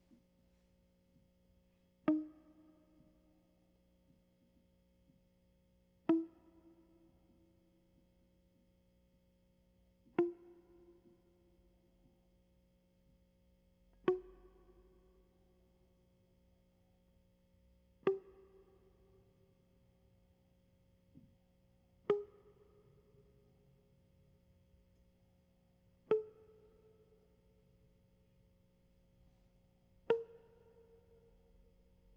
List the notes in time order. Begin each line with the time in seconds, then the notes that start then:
2.09 D#4
6.10 E4
10.19 F4
14.08 F#4
18.07 G4
22.11 G#4
26.12 A4
30.11 A#4